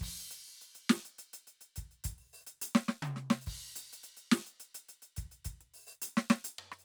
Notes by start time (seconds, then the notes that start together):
0.01 kick, crash
0.07 kick
0.09 kick
0.20 closed hi-hat
0.31 closed hi-hat
0.48 closed hi-hat
0.61 closed hi-hat
0.75 closed hi-hat
0.89 snare
1.05 closed hi-hat
1.18 closed hi-hat
1.33 closed hi-hat
1.47 closed hi-hat
1.61 closed hi-hat
1.76 closed hi-hat, kick
1.91 closed hi-hat
2.04 closed hi-hat, kick
2.11 kick
2.18 open hi-hat
2.33 open hi-hat
2.40 hi-hat pedal
2.47 closed hi-hat
2.62 closed hi-hat
2.75 snare
2.88 snare
3.02 hi-hat pedal, mid tom
3.16 snare
3.30 snare
3.41 hi-hat pedal
3.46 kick, crash
3.56 kick
3.76 closed hi-hat
3.93 closed hi-hat
4.03 closed hi-hat
4.17 closed hi-hat
4.32 snare
4.46 closed hi-hat
4.60 closed hi-hat
4.75 closed hi-hat
4.89 closed hi-hat
5.02 closed hi-hat
5.16 closed hi-hat, kick
5.24 kick
5.26 kick
5.31 closed hi-hat
5.45 closed hi-hat, kick
5.61 closed hi-hat
5.74 open hi-hat
5.87 open hi-hat
5.92 hi-hat pedal
6.02 closed hi-hat
6.17 snare
6.30 snare
6.44 closed hi-hat
6.58 floor tom
6.72 cross-stick
6.79 hi-hat pedal